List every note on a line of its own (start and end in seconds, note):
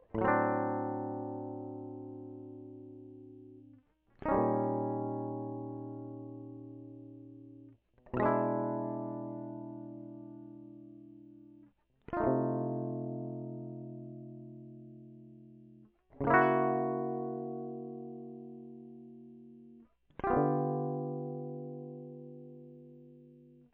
0.16 3.82 A2
0.21 0.28 A2
0.21 3.63 F#3
0.25 3.84 C4
0.25 3.79 D4
0.25 0.65 A4
4.26 7.76 C#4
4.26 7.74 D#4
4.32 7.75 G3
4.37 4.42 A2
4.37 7.79 A#2
8.15 11.71 B2
8.19 8.29 E3
8.19 11.72 G#3
8.19 11.71 D4
8.26 11.67 E4
8.26 8.65 E4
12.14 15.88 D#4
12.14 15.86 F4
12.21 15.92 A3
12.26 15.89 C3
12.26 13.18 E4
16.22 19.84 C#3
16.28 19.87 A#3
16.28 19.87 E4
16.34 19.84 F#4
20.24 23.66 F4
20.24 22.90 G4
20.31 23.71 B3
20.38 23.68 D3